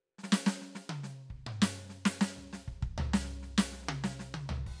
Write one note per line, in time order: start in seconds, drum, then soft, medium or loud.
0.18 snare soft
0.23 snare medium
0.32 snare loud
0.46 snare loud
0.61 snare soft
0.75 snare medium
0.89 high tom loud
1.03 snare medium
1.30 kick soft
1.46 mid tom loud
1.62 snare loud
1.89 snare soft
2.05 snare loud
2.21 snare loud
2.36 floor tom soft
2.53 snare medium
2.68 kick soft
2.82 kick medium
2.98 floor tom loud
3.13 snare loud
3.24 snare soft
3.42 snare soft
3.58 snare loud
3.72 snare soft
3.78 snare soft
3.82 snare soft
3.89 high tom loud
4.04 snare loud
4.19 snare medium
4.34 high tom loud
4.49 floor tom loud
4.66 kick soft
4.66 crash soft